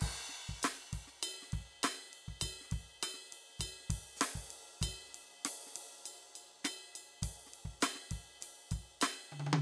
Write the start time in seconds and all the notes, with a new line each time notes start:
0.01 kick, hi-hat pedal, crash
0.07 kick
0.13 kick
0.20 cross-stick
0.29 snare
0.49 kick
0.62 snare, hi-hat pedal, ride bell
0.93 kick, ride
1.07 snare
1.22 hi-hat pedal, ride bell
1.42 snare
1.47 snare
1.51 kick, snare, ride
1.60 kick
1.83 snare, hi-hat pedal, ride bell
2.13 ride
2.28 kick
2.40 kick, snare, hi-hat pedal, ride bell
2.61 cross-stick, snare
2.70 kick, snare, ride
2.78 kick
2.82 kick
3.01 cross-stick, hi-hat pedal, ride bell
3.14 snare
3.32 ride
3.49 snare
3.59 kick, snare, hi-hat pedal, ride bell
3.80 snare
3.83 snare
3.90 kick, ride
3.97 kick
4.16 hi-hat pedal
4.21 snare, ride
4.35 kick, snare
4.50 ride
4.81 kick, hi-hat pedal, ride bell
4.88 kick
4.92 kick
5.08 snare
5.14 ride
5.45 snare, hi-hat pedal, ride
5.67 snare
5.72 snare, ride
6.00 snare
6.02 snare, ride bell
6.35 ride bell
6.64 snare, hi-hat pedal, ride bell
6.95 ride bell
7.22 kick, hi-hat pedal, ride
7.46 snare
7.54 ride
7.65 kick
7.81 snare, hi-hat pedal, ride bell
7.95 snare
8.11 kick, ride
8.17 kick
8.41 hi-hat pedal, ride
8.71 kick, ride bell
8.78 kick
9.01 snare, hi-hat pedal, ride bell
9.32 high tom
9.39 high tom
9.46 high tom
9.53 high tom